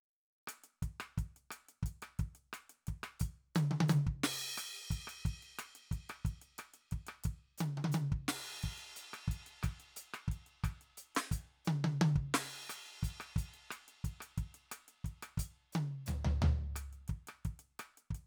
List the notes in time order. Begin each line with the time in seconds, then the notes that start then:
0.47 cross-stick, closed hi-hat
0.64 closed hi-hat
0.82 kick, closed hi-hat
1.00 cross-stick, closed hi-hat
1.17 kick, closed hi-hat
1.36 closed hi-hat
1.51 cross-stick, closed hi-hat
1.69 closed hi-hat
1.83 kick, closed hi-hat
2.02 cross-stick, closed hi-hat
2.19 kick, closed hi-hat
2.35 closed hi-hat
2.53 cross-stick, closed hi-hat
2.69 closed hi-hat
2.87 kick, closed hi-hat
3.03 cross-stick, closed hi-hat
3.19 closed hi-hat, kick
3.55 hi-hat pedal, high tom
3.71 high tom
3.80 high tom
3.88 hi-hat pedal, high tom
4.07 kick
4.23 snare, crash
4.57 closed hi-hat, cross-stick
4.76 closed hi-hat
4.90 kick, closed hi-hat
5.07 cross-stick, closed hi-hat
5.25 kick, closed hi-hat
5.42 closed hi-hat
5.59 cross-stick, closed hi-hat
5.75 closed hi-hat
5.91 kick, closed hi-hat
6.09 cross-stick, closed hi-hat
6.25 kick, closed hi-hat
6.42 closed hi-hat
6.58 cross-stick, closed hi-hat
6.74 closed hi-hat
6.91 kick, closed hi-hat
7.07 cross-stick, closed hi-hat
7.24 kick, closed hi-hat
7.58 hi-hat pedal, high tom
7.77 high tom
7.84 high tom
7.92 hi-hat pedal, high tom
8.12 kick
8.28 snare, crash
8.63 kick, closed hi-hat
8.78 closed hi-hat
8.96 closed hi-hat
9.13 cross-stick, closed hi-hat
9.28 kick, closed hi-hat
9.46 closed hi-hat
9.63 kick, cross-stick, closed hi-hat
9.80 closed hi-hat
9.96 closed hi-hat
10.14 cross-stick, closed hi-hat
10.28 kick, closed hi-hat
10.46 closed hi-hat
10.64 kick, cross-stick, closed hi-hat
10.81 closed hi-hat
10.97 closed hi-hat
11.15 snare, closed hi-hat
11.31 closed hi-hat, kick
11.65 hi-hat pedal, high tom
11.84 high tom
12.01 high tom
12.16 kick
12.34 snare, crash
12.69 closed hi-hat, cross-stick
12.86 closed hi-hat
13.03 closed hi-hat, kick
13.20 cross-stick, closed hi-hat
13.36 closed hi-hat, kick
13.54 closed hi-hat
13.71 cross-stick, closed hi-hat
13.88 closed hi-hat
14.04 kick, closed hi-hat
14.20 cross-stick, closed hi-hat
14.38 kick, closed hi-hat
14.54 closed hi-hat
14.71 cross-stick, closed hi-hat
14.88 closed hi-hat
15.04 kick, closed hi-hat
15.22 cross-stick, closed hi-hat
15.37 closed hi-hat, kick
15.72 hi-hat pedal, high tom
16.06 floor tom, hi-hat pedal
16.24 floor tom
16.42 floor tom
16.76 cross-stick, closed hi-hat
16.93 closed hi-hat
17.08 kick, closed hi-hat
17.27 cross-stick, closed hi-hat
17.45 kick, closed hi-hat
17.59 closed hi-hat
17.79 cross-stick, closed hi-hat
17.97 closed hi-hat
18.10 kick
18.15 closed hi-hat